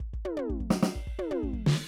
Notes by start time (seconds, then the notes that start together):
0.04 kick
0.13 kick
0.25 floor tom, high tom
0.37 floor tom, high tom
0.50 kick
0.60 kick
0.70 snare, ride
0.82 snare, ride
0.95 kick
1.07 kick
1.18 floor tom, high tom
1.30 floor tom, high tom
1.43 kick
1.53 kick
1.66 snare, crash